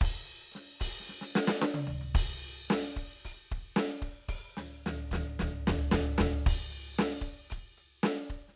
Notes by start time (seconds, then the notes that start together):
0.01 kick, hi-hat pedal, crash
0.52 snare, hi-hat pedal
0.75 hi-hat pedal
0.81 kick, crash
1.00 snare
1.06 snare, hi-hat pedal
1.22 snare
1.36 snare
1.48 snare
1.62 snare, hi-hat pedal
1.75 high tom
1.88 kick, floor tom
2.02 floor tom
2.16 kick, crash
2.69 snare, hi-hat pedal, crash
2.97 kick, closed hi-hat
3.26 open hi-hat, kick
3.52 open hi-hat, kick
3.77 open hi-hat, snare
4.03 open hi-hat, kick
4.29 open hi-hat, kick
4.58 snare, floor tom
4.87 snare, floor tom
5.12 kick, snare, floor tom
5.40 kick, snare, floor tom
5.68 kick, snare, floor tom
5.92 kick, snare, floor tom
6.19 kick, snare, floor tom
6.47 kick, crash
6.95 hi-hat pedal
6.99 closed hi-hat, snare
7.22 kick, closed hi-hat
7.51 closed hi-hat, kick
7.78 closed hi-hat
8.04 closed hi-hat, snare
8.31 kick, closed hi-hat
8.49 snare